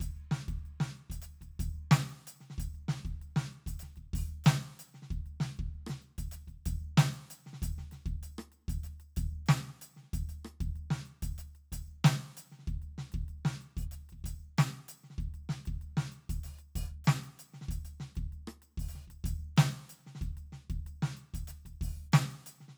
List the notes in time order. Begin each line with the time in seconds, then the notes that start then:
0.01 kick, percussion
0.17 percussion
0.32 snare
0.49 kick, percussion
0.66 percussion
0.81 snare
0.96 percussion
1.10 kick, percussion
1.22 percussion
1.38 kick, snare
1.42 percussion
1.60 kick, percussion
1.91 snare, percussion
2.10 percussion
2.27 percussion
2.41 snare
2.50 snare
2.58 kick, percussion
2.75 percussion
2.89 snare
3.05 kick, percussion
3.22 percussion
3.36 snare
3.52 percussion
3.67 kick, percussion
3.80 snare, percussion
3.96 kick, percussion
4.14 kick, percussion
4.44 snare, percussion
4.62 percussion
4.80 percussion
4.95 snare
5.03 snare
5.11 kick, percussion
5.26 percussion
5.41 snare
5.45 snare
5.57 kick, percussion
5.74 percussion
5.87 cross-stick, snare
6.02 percussion
6.18 kick, percussion
6.32 snare, percussion
6.48 kick, percussion
6.66 kick, percussion
6.98 snare, percussion
7.14 percussion
7.31 percussion
7.47 snare
7.54 snare
7.62 kick, percussion
7.79 snare
7.92 snare, percussion
8.06 kick, percussion
8.23 percussion
8.39 cross-stick
8.52 percussion
8.69 kick, percussion
8.84 snare, percussion
9.00 percussion
9.17 kick, percussion
9.46 snare, percussion
9.52 percussion
9.68 snare
9.82 percussion
9.97 snare
10.04 snare
10.08 snare
10.14 kick, percussion
10.29 percussion
10.45 cross-stick
10.61 kick, percussion
10.76 percussion
10.91 snare
11.06 percussion
11.23 kick, percussion
11.38 percussion
11.55 percussion
11.72 kick, percussion
12.05 snare, percussion
12.37 percussion
12.52 snare
12.59 snare
12.64 snare
12.68 kick, percussion
12.82 percussion
12.98 snare
13.12 kick, percussion
13.29 percussion
13.45 snare
13.61 percussion
13.77 kick, percussion
13.92 snare, percussion
14.09 kick, percussion
14.24 kick, percussion
14.58 snare, percussion
14.62 percussion
14.78 snare
14.89 percussion
15.04 snare
15.11 snare
15.18 kick, percussion
15.34 percussion
15.49 snare
15.66 kick, percussion
15.76 kick
15.82 percussion
15.97 snare
16.12 percussion
16.30 kick, percussion
16.44 snare, percussion
16.59 percussion
16.76 kick, percussion
17.05 snare, percussion
17.24 percussion
17.39 percussion
17.54 snare
17.62 snare
17.69 kick, percussion
17.85 percussion
18.00 snare
18.16 kick, percussion
18.33 percussion
18.48 cross-stick
18.62 percussion
18.78 kick, percussion
18.89 percussion
18.95 snare
19.08 kick, percussion
19.24 kick, percussion
19.57 snare, percussion
19.71 percussion
19.90 percussion
20.07 snare
20.15 snare
20.22 kick, percussion
20.37 percussion
20.53 snare
20.70 kick, percussion
20.87 percussion
21.03 snare
21.17 percussion
21.34 kick, percussion
21.48 snare, percussion
21.66 kick, percussion
21.81 kick, percussion
22.13 snare, percussion
22.31 percussion
22.47 percussion
22.61 snare
22.69 snare